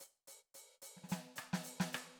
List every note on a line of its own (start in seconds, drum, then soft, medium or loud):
0.01 hi-hat pedal medium
0.27 hi-hat pedal medium
0.54 hi-hat pedal medium
0.82 hi-hat pedal medium
0.96 snare soft
1.03 snare soft
1.09 snare medium
1.09 hi-hat pedal medium
1.36 cross-stick medium
1.36 hi-hat pedal medium
1.53 snare medium
1.64 hi-hat pedal medium
1.80 snare medium
1.93 cross-stick medium
1.93 hi-hat pedal medium